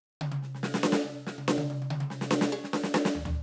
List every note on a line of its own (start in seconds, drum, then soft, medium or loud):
0.21 high tom loud
0.32 high tom loud
0.43 snare soft
0.55 snare soft
0.63 snare loud
0.74 snare loud
0.83 snare loud
0.92 snare loud
1.05 high tom medium
1.16 high tom soft
1.27 snare medium
1.38 high tom loud
1.48 snare loud
1.58 high tom loud
1.70 high tom medium
1.82 high tom medium
1.90 high tom loud
2.00 high tom loud
2.10 snare medium
2.21 snare medium
2.31 snare loud
2.41 snare loud
2.52 percussion loud
2.64 snare medium
2.73 snare loud
2.84 snare loud
2.94 snare loud
3.05 snare loud
3.15 floor tom medium
3.25 floor tom loud